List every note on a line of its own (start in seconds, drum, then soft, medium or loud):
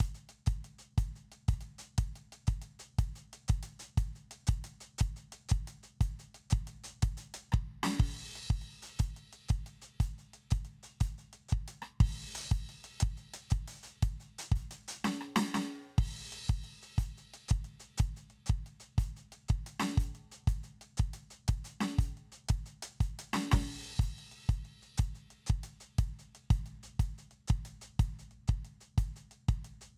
0.00 closed hi-hat loud
0.00 kick medium
0.14 closed hi-hat medium
0.29 closed hi-hat medium
0.46 closed hi-hat loud
0.46 kick medium
0.64 closed hi-hat medium
0.79 closed hi-hat medium
0.98 kick medium
0.98 closed hi-hat loud
1.16 closed hi-hat medium
1.32 closed hi-hat medium
1.48 closed hi-hat loud
1.48 kick medium
1.53 kick soft
1.61 closed hi-hat medium
1.78 closed hi-hat medium
1.98 kick medium
1.98 closed hi-hat loud
2.16 open hi-hat medium
2.32 closed hi-hat medium
2.47 closed hi-hat medium
2.47 kick medium
2.62 closed hi-hat medium
2.79 closed hi-hat medium
2.99 kick medium
2.99 closed hi-hat loud
3.15 closed hi-hat medium
3.33 closed hi-hat medium
3.48 closed hi-hat loud
3.48 kick medium
3.63 closed hi-hat loud
3.79 closed hi-hat loud
3.97 kick medium
3.97 closed hi-hat loud
4.15 closed hi-hat medium
4.31 closed hi-hat medium
4.47 closed hi-hat loud
4.47 kick medium
4.64 closed hi-hat loud
4.80 closed hi-hat medium
4.98 closed hi-hat loud
4.98 kick medium
5.16 closed hi-hat medium
5.32 closed hi-hat medium
5.49 closed hi-hat loud
5.49 kick medium
5.67 closed hi-hat medium
5.83 closed hi-hat medium
6.01 kick medium
6.01 closed hi-hat loud
6.19 open hi-hat medium
6.34 closed hi-hat medium
6.50 closed hi-hat loud
6.50 kick medium
6.67 closed hi-hat medium
6.84 open hi-hat loud
7.02 kick medium
7.02 closed hi-hat loud
7.17 closed hi-hat loud
7.34 closed hi-hat loud
7.52 kick medium
7.52 cross-stick medium
7.83 snare loud
7.99 kick medium
7.99 crash loud
8.35 open hi-hat medium
8.50 open hi-hat medium
8.50 kick medium
8.61 open hi-hat medium
8.82 open hi-hat loud
8.99 closed hi-hat loud
8.99 kick medium
9.16 open hi-hat medium
9.33 closed hi-hat medium
9.49 closed hi-hat loud
9.49 kick medium
9.66 closed hi-hat medium
9.82 closed hi-hat medium
10.00 closed hi-hat loud
10.00 kick medium
10.18 open hi-hat medium
10.33 closed hi-hat medium
10.51 closed hi-hat loud
10.51 kick medium
10.65 closed hi-hat medium
10.83 open hi-hat medium
11.00 open hi-hat loud
11.00 kick medium
11.18 open hi-hat medium
11.33 closed hi-hat medium
11.49 open hi-hat medium
11.49 kick medium
11.68 closed hi-hat loud
11.82 cross-stick medium
12.00 kick loud
12.00 crash loud
12.35 open hi-hat loud
12.51 open hi-hat loud
12.51 kick medium
12.69 open hi-hat medium
12.84 closed hi-hat medium
13.00 kick medium
13.00 closed hi-hat loud
13.17 closed hi-hat medium
13.34 closed hi-hat loud
13.50 closed hi-hat loud
13.50 kick medium
13.68 open hi-hat loud
13.83 open hi-hat medium
14.03 kick medium
14.03 closed hi-hat loud
14.20 open hi-hat medium
14.38 closed hi-hat loud
14.52 open hi-hat loud
14.52 kick medium
14.57 kick soft
14.71 open hi-hat loud
14.88 open hi-hat loud
15.04 snare loud
15.21 cross-stick medium
15.36 snare loud
15.54 snare loud
15.98 kick medium
15.98 crash loud
16.32 closed hi-hat medium
16.49 closed hi-hat medium
16.49 kick medium
16.64 closed hi-hat medium
16.82 closed hi-hat medium
16.98 closed hi-hat loud
16.98 kick medium
17.17 closed hi-hat medium
17.34 closed hi-hat medium
17.48 closed hi-hat loud
17.48 kick medium
17.64 closed hi-hat medium
17.80 closed hi-hat medium
17.98 closed hi-hat loud
17.98 kick medium
18.16 closed hi-hat medium
18.30 closed hi-hat soft
18.46 closed hi-hat medium
18.46 kick medium
18.66 closed hi-hat medium
18.80 closed hi-hat medium
18.98 closed hi-hat loud
18.98 kick medium
19.16 closed hi-hat medium
19.32 closed hi-hat medium
19.48 closed hi-hat medium
19.48 kick medium
19.66 closed hi-hat loud
19.80 snare loud
19.97 closed hi-hat loud
19.97 kick medium
20.15 closed hi-hat medium
20.31 closed hi-hat medium
20.47 kick medium
20.47 closed hi-hat loud
20.63 closed hi-hat medium
20.81 closed hi-hat medium
20.97 closed hi-hat loud
20.97 kick medium
21.13 closed hi-hat loud
21.30 closed hi-hat medium
21.48 kick medium
21.48 closed hi-hat loud
21.64 closed hi-hat loud
21.81 snare loud
21.99 open hi-hat loud
21.99 kick medium
22.17 closed hi-hat soft
22.32 closed hi-hat medium
22.49 kick medium
22.49 closed hi-hat loud
22.66 closed hi-hat medium
22.82 closed hi-hat loud
23.00 closed hi-hat loud
23.00 kick medium
23.19 closed hi-hat loud
23.33 snare loud
23.51 kick medium
23.51 snare loud
23.51 crash loud
23.99 closed hi-hat loud
23.99 kick medium
24.04 kick soft
24.18 closed hi-hat medium
24.31 closed hi-hat medium
24.49 closed hi-hat medium
24.49 kick medium
24.65 closed hi-hat soft
24.82 closed hi-hat soft
24.98 closed hi-hat loud
24.98 kick medium
25.15 closed hi-hat medium
25.30 closed hi-hat medium
25.46 closed hi-hat loud
25.46 kick medium
25.63 closed hi-hat loud
25.80 closed hi-hat medium
25.98 kick medium
25.98 closed hi-hat loud
26.19 closed hi-hat medium
26.35 closed hi-hat medium
26.50 closed hi-hat loud
26.50 kick loud
26.66 closed hi-hat medium
26.83 closed hi-hat medium
26.99 kick medium
26.99 closed hi-hat loud
27.18 closed hi-hat medium
27.31 closed hi-hat soft
27.47 closed hi-hat medium
27.47 kick medium
27.65 closed hi-hat medium
27.81 closed hi-hat medium
27.99 kick medium
27.99 closed hi-hat loud
28.19 closed hi-hat medium
28.31 closed hi-hat soft
28.48 closed hi-hat medium
28.48 kick medium
28.65 closed hi-hat medium
28.81 closed hi-hat medium
28.98 kick medium
28.98 closed hi-hat loud
29.16 closed hi-hat medium
29.31 closed hi-hat medium
29.48 closed hi-hat medium
29.48 kick medium
29.64 closed hi-hat medium
29.81 closed hi-hat medium